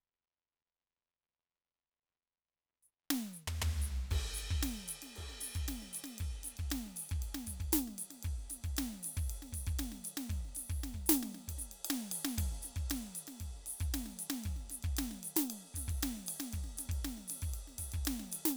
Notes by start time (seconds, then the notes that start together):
2.82 hi-hat pedal
3.10 snare
3.33 hi-hat pedal
3.47 floor tom
3.62 floor tom
3.81 hi-hat pedal
4.11 kick, crash, ride
4.34 hi-hat pedal
4.38 ride
4.50 kick
4.62 snare, ride
4.80 snare
4.88 hi-hat pedal, ride
5.02 snare, ride
5.15 kick, ride
5.29 snare
5.40 snare, hi-hat pedal, ride
5.55 kick, ride
5.68 snare, ride
5.82 snare
5.93 hi-hat pedal, ride
6.04 snare, ride
6.18 kick, ride
6.32 snare
6.43 snare, hi-hat pedal, ride
6.57 kick, ride
6.70 snare, ride
6.86 snare
6.96 hi-hat pedal, ride
7.09 kick, ride
7.22 ride
7.34 snare
7.47 kick, hi-hat pedal, ride
7.60 kick, ride
7.72 snare, ride
7.87 snare
7.98 hi-hat pedal, ride
8.10 snare, ride
8.23 kick, ride
8.38 snare
8.50 snare, hi-hat pedal, ride
8.64 kick, ride
8.77 snare, ride
8.93 snare
9.03 snare, hi-hat pedal, ride
9.17 kick, ride
9.30 ride
9.42 snare
9.52 kick, hi-hat pedal, ride
9.66 kick, ride
9.79 snare, ride
9.92 snare
10.04 hi-hat pedal, ride
10.17 snare, ride
10.28 kick, hi-hat pedal, ride
10.45 snare
10.55 snare, hi-hat pedal, ride
10.69 kick, ride
10.83 snare, ride
10.94 kick
11.06 snare, hi-hat pedal, ride
11.23 snare
11.32 snare, hi-hat pedal
11.48 kick, ride
11.58 snare, hi-hat pedal
11.71 ride
11.83 hi-hat pedal, ride
11.90 snare
12.11 hi-hat pedal, ride
12.25 snare
12.38 kick, ride
12.52 snare
12.62 snare, hi-hat pedal, ride
12.76 kick, ride
12.90 snare, ride
13.02 snare
13.15 hi-hat pedal, ride
13.27 snare, ride
13.40 kick, ride
13.55 snare
13.66 snare, hi-hat pedal, ride
13.80 kick, ride
13.94 snare, ride
14.06 snare
14.19 hi-hat pedal, ride
14.30 snare, ride
14.44 kick, ride
14.56 snare
14.70 snare, hi-hat pedal, ride
14.83 kick, ride
14.97 snare, ride
15.11 snare
15.23 hi-hat pedal, ride
15.36 snare, ride
15.49 hi-hat pedal, ride
15.64 snare
15.74 kick, snare, hi-hat pedal, ride
15.88 kick, ride
15.99 snare, hi-hat pedal, ride
16.17 snare
16.26 hi-hat pedal, ride
16.40 snare, ride
16.51 kick, hi-hat pedal, ride
16.64 snare
16.77 snare, hi-hat pedal, ride
16.89 kick, ride
17.02 snare, hi-hat pedal, ride
17.17 snare
17.28 snare, hi-hat pedal, ride
17.42 kick, ride
17.54 ride
17.67 snare
17.78 kick, hi-hat pedal, ride
17.92 kick, ride
18.05 snare, ride
18.19 snare
18.32 hi-hat pedal, ride
18.45 snare